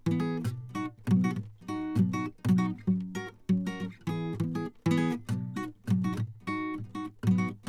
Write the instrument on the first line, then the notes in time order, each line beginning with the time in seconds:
acoustic guitar
0.07 E3
0.12 B3
0.21 E4 G#4
0.46 B2
0.71 B3
0.76 D#4 F#4
1.08 B2
1.12 F#3 B3
1.25 E4 G4
1.69 D#4 F#4
1.97 B2 F#3
2.01 B3
2.14 D#4 F#4
2.46 B2
2.50 F#3 B3
2.59 D#4 F#4
2.88 F#3 C#4
3.16 F#4 A#4
3.50 F#3 C#4
3.68 F#4 A#4
3.81 F#3 C#4
4.08 E3 B3 E4 G#4
4.41 E3
4.45 B3
4.56 E4 G#4
4.87 E3
4.92 B3
4.99 E4 G#4
5.29 B2 F#3
5.57 D#4 F#4
5.88 B2 F#3
6.05 D#4 F#4
6.18 A#2
6.48 D#4 F#4
6.79 B2
6.96 D#4 F#4
7.24 B2
7.28 F#3
7.33 B3
7.39 D#4 F#4